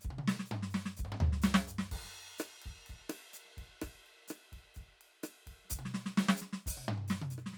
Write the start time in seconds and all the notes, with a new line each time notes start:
0.01 kick, hi-hat pedal
0.11 kick, high tom
0.19 high tom
0.28 snare
0.39 snare
0.46 hi-hat pedal
0.51 mid tom
0.63 snare
0.70 hi-hat pedal
0.74 snare
0.86 snare
0.97 kick, hi-hat pedal
1.05 kick, mid tom
1.12 mid tom
1.19 kick, floor tom
1.33 snare
1.42 snare, hi-hat pedal
1.54 snare
1.67 hi-hat pedal, mid tom
1.79 snare
1.91 kick, crash
2.04 snare
2.38 cross-stick, hi-hat pedal, ride
2.62 kick, ride
2.68 kick, snare
2.73 snare
2.86 kick, hi-hat pedal, ride
2.95 kick
3.10 cross-stick, ride
3.33 hi-hat pedal, ride
3.45 snare
3.57 kick, ride
3.63 kick
3.82 kick, cross-stick, hi-hat pedal, ride
3.88 kick
4.06 ride
4.28 cross-stick, hi-hat pedal, ride
4.52 kick, ride
4.74 kick, hi-hat pedal, ride
4.82 kick
5.01 ride
5.23 cross-stick, hi-hat pedal, ride
5.47 kick, ride
5.65 snare
5.70 kick, hi-hat pedal
5.78 kick, high tom
5.85 snare
5.94 snare
6.06 snare
6.18 snare
6.29 snare
6.37 hi-hat pedal
6.42 snare
6.53 snare
6.66 kick, hi-hat pedal
6.77 high tom
6.86 hi-hat pedal, mid tom
6.98 high tom
7.08 snare, hi-hat pedal
7.22 high tom
7.30 snare, hi-hat pedal
7.38 cross-stick, snare
7.46 snare
7.53 snare